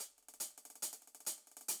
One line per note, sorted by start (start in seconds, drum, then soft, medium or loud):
0.00 closed hi-hat medium
0.10 closed hi-hat soft
0.18 closed hi-hat soft
0.23 closed hi-hat soft
0.28 closed hi-hat soft
0.34 closed hi-hat soft
0.40 closed hi-hat loud
0.51 closed hi-hat soft
0.58 closed hi-hat soft
0.65 closed hi-hat soft
0.70 closed hi-hat soft
0.76 closed hi-hat soft
0.82 closed hi-hat loud
0.93 closed hi-hat medium
1.02 closed hi-hat soft
1.07 closed hi-hat soft
1.15 closed hi-hat soft
1.20 closed hi-hat soft
1.25 closed hi-hat loud
1.25 closed hi-hat soft
1.38 closed hi-hat soft
1.47 closed hi-hat soft
1.52 closed hi-hat soft
1.57 closed hi-hat soft
1.61 closed hi-hat soft
1.68 closed hi-hat loud